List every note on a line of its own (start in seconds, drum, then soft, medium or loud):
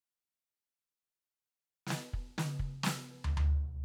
1.87 snare medium
1.90 snare loud
2.13 kick soft
2.38 snare medium
2.38 high tom loud
2.59 kick soft
2.83 snare loud
2.86 snare loud
3.24 floor tom loud
3.37 floor tom loud